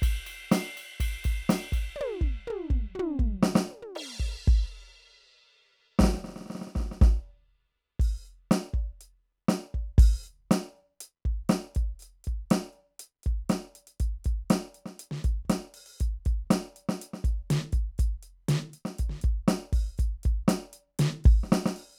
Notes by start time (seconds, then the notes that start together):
0.02 kick, ride
0.27 ride
0.52 snare, ride
0.77 ride
1.00 kick, ride
1.24 kick, ride
1.49 snare, ride
1.72 kick, ride bell
1.96 high tom
2.01 high tom
2.21 kick
2.47 mid tom
2.50 mid tom
2.70 kick
2.95 floor tom
2.99 floor tom
3.19 kick
3.43 snare
3.56 snare
3.67 high tom
3.82 mid tom
3.96 crash
4.20 kick
4.48 kick, snare
5.99 kick, snare
6.04 snare
6.09 snare
6.18 snare
6.23 snare
6.29 snare
6.33 snare
6.36 snare
6.41 snare
6.46 snare
6.50 snare
6.55 snare
6.59 snare
6.62 snare
6.67 snare
6.75 kick, snare
6.80 snare
6.85 snare
6.92 snare
6.97 snare
7.01 kick, snare
8.00 open hi-hat, kick
8.25 hi-hat pedal
8.51 closed hi-hat, snare
8.74 kick
9.01 closed hi-hat
9.49 closed hi-hat, snare
9.74 kick
9.98 open hi-hat, kick
10.26 hi-hat pedal
10.51 closed hi-hat, snare
10.77 closed hi-hat
11.01 closed hi-hat
11.25 kick
11.49 closed hi-hat, snare
11.75 closed hi-hat, kick
11.99 closed hi-hat, hi-hat pedal
12.24 closed hi-hat, kick
12.51 closed hi-hat, snare
12.73 open hi-hat
13.00 closed hi-hat
13.23 closed hi-hat, kick
13.49 closed hi-hat, snare
13.75 closed hi-hat
13.87 closed hi-hat
14.00 closed hi-hat, kick
14.25 closed hi-hat, kick
14.50 closed hi-hat, snare
14.75 closed hi-hat
14.86 snare
15.00 closed hi-hat
15.11 snare
15.24 closed hi-hat, kick
15.45 kick
15.50 closed hi-hat, snare
15.74 open hi-hat
15.86 open hi-hat
15.99 closed hi-hat, kick, hi-hat pedal
16.26 closed hi-hat, kick
16.47 kick, snare
16.51 closed hi-hat
16.76 closed hi-hat
16.89 snare
17.02 closed hi-hat
17.14 snare
17.24 closed hi-hat, kick
17.50 closed hi-hat, snare
17.73 closed hi-hat, kick
17.98 closed hi-hat, kick, hi-hat pedal
18.23 closed hi-hat
18.49 closed hi-hat, snare
18.72 closed hi-hat, hi-hat pedal
18.85 snare
18.99 closed hi-hat, kick
19.10 snare
19.22 closed hi-hat, kick
19.48 closed hi-hat, snare
19.73 open hi-hat, kick
19.98 closed hi-hat, kick, hi-hat pedal
20.23 closed hi-hat, kick
20.48 closed hi-hat, snare
20.73 closed hi-hat
20.99 closed hi-hat, snare
21.24 open hi-hat, kick
21.44 snare
21.52 snare
21.66 snare
21.76 open hi-hat